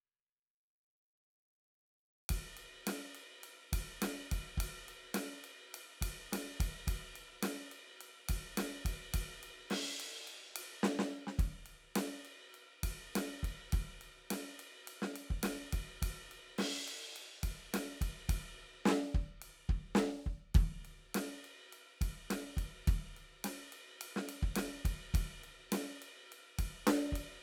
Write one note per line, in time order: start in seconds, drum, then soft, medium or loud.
2.29 kick medium
2.29 ride loud
2.57 ride medium
2.87 snare medium
2.87 ride loud
3.15 ride medium
3.43 ride medium
3.73 kick medium
3.73 ride loud
4.02 snare medium
4.02 ride loud
4.31 kick medium
4.31 ride loud
4.57 kick medium
4.57 ride loud
4.88 ride medium
5.14 snare medium
5.14 ride loud
5.44 ride medium
5.74 ride medium
6.01 kick medium
6.01 ride loud
6.32 snare medium
6.32 ride loud
6.60 kick medium
6.60 ride loud
6.87 kick medium
6.87 ride loud
7.15 ride medium
7.43 snare medium
7.43 ride loud
7.71 ride medium
8.01 ride medium
8.29 kick medium
8.29 ride loud
8.57 snare medium
8.57 ride loud
8.85 kick medium
8.85 ride loud
9.14 kick medium
9.14 ride loud
9.43 ride medium
9.70 snare medium
9.70 ride loud
10.00 ride medium
10.27 ride medium
10.56 ride loud
10.83 snare loud
10.99 snare loud
11.27 snare medium
11.39 kick medium
11.39 ride medium
11.66 ride medium
11.95 snare loud
11.95 ride loud
12.25 ride soft
12.54 ride soft
12.83 kick medium
12.83 ride loud
13.15 snare loud
13.15 ride loud
13.43 kick medium
13.43 ride medium
13.72 kick medium
13.72 ride medium
14.01 ride medium
14.30 snare medium
14.30 ride loud
14.59 ride medium
14.87 ride medium
15.02 snare medium
15.16 ride medium
15.30 kick medium
15.43 snare medium
15.43 ride loud
15.73 kick medium
15.73 ride medium
16.02 kick medium
16.02 ride loud
16.31 ride soft
16.58 snare loud
16.58 ride loud
16.88 ride medium
17.16 ride medium
17.43 kick medium
17.43 ride loud
17.74 snare medium
17.74 ride loud
18.01 kick medium
18.01 ride medium
18.29 kick medium
18.29 ride loud
18.85 snare loud
18.89 snare loud
19.14 kick medium
19.42 ride medium
19.69 kick medium
19.95 snare loud
19.99 cross-stick medium
20.26 kick medium
20.54 kick loud
20.54 ride medium
20.85 ride soft
21.14 snare medium
21.14 ride loud
21.44 ride soft
21.73 ride medium
22.01 kick medium
22.01 ride loud
22.30 snare medium
22.30 ride loud
22.57 kick medium
22.57 ride medium
22.87 kick medium
22.87 ride medium
23.16 ride soft
23.44 snare medium
23.44 ride loud
23.72 ride medium
24.01 ride loud
24.16 snare medium
24.29 ride medium
24.42 kick medium
24.56 snare medium
24.56 ride loud
24.85 kick medium
24.85 ride medium
25.14 kick medium
25.14 ride loud
25.43 ride soft
25.72 snare loud
25.72 ride loud
26.02 ride medium
26.32 ride medium
26.58 kick medium
26.58 ride loud
26.87 snare loud
26.87 ride loud
27.12 kick medium
27.12 ride medium